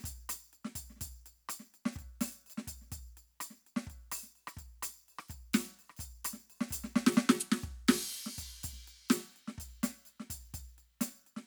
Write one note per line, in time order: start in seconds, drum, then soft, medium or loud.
0.00 kick soft
0.00 percussion soft
0.06 percussion medium
0.11 kick soft
0.30 cross-stick medium
0.30 percussion loud
0.53 percussion soft
0.65 snare medium
0.76 kick soft
0.76 percussion loud
0.90 snare soft
0.97 snare soft
1.00 kick soft
1.00 snare soft
1.00 percussion loud
1.08 kick soft
1.26 percussion medium
1.49 cross-stick medium
1.49 percussion loud
1.60 snare soft
1.75 percussion soft
1.86 snare medium
1.93 kick soft
1.93 percussion soft
1.99 kick soft
1.99 percussion soft
2.21 snare medium
2.21 percussion loud
2.47 percussion soft
2.50 percussion medium
2.58 snare medium
2.68 kick soft
2.68 percussion medium
2.82 snare soft
2.87 snare soft
2.91 kick soft
2.91 snare soft
2.91 percussion medium
2.99 kick soft
3.18 percussion soft
3.41 cross-stick medium
3.41 percussion loud
3.51 snare soft
3.67 percussion soft
3.77 snare medium
3.84 kick soft
3.84 percussion soft
3.90 percussion soft
4.12 cross-stick medium
4.12 percussion loud
4.24 snare soft
4.36 percussion soft
4.48 cross-stick medium
4.48 percussion medium
4.57 kick soft
4.57 percussion medium
4.83 cross-stick medium
4.83 percussion loud
5.09 percussion soft
5.19 cross-stick medium
5.29 kick soft
5.29 percussion soft
5.31 percussion medium
5.54 snare loud
5.54 percussion loud
5.79 percussion soft
5.90 cross-stick soft
5.97 kick soft
5.97 percussion soft
6.01 percussion medium
6.25 cross-stick medium
6.25 percussion loud
6.34 snare soft
6.50 percussion soft
6.61 snare medium
6.69 kick soft
6.69 percussion soft
6.73 percussion loud
6.84 snare medium
6.96 snare loud
7.07 snare loud
7.13 percussion medium
7.18 snare loud
7.30 snare loud
7.40 floor tom loud
7.52 snare medium
7.62 kick medium
7.62 percussion soft
7.71 kick soft
7.74 kick soft
7.88 snare loud
7.88 crash loud
8.13 percussion soft
8.27 snare medium
8.38 kick soft
8.38 percussion medium
8.64 kick soft
8.64 percussion loud
8.71 kick soft
8.71 snare soft
8.75 snare soft
8.88 percussion soft
9.09 snare loud
9.09 percussion soft
9.12 percussion loud
9.19 snare soft
9.31 percussion soft
9.37 percussion soft
9.48 snare medium
9.58 kick soft
9.58 percussion medium
9.66 kick soft
9.84 snare medium
9.84 percussion loud
10.06 percussion soft
10.08 percussion soft
10.20 snare soft
10.30 kick soft
10.30 percussion loud
10.54 kick soft
10.54 percussion medium
10.60 kick soft
10.79 percussion soft
11.01 snare medium
11.01 percussion loud
11.27 percussion soft
11.37 snare medium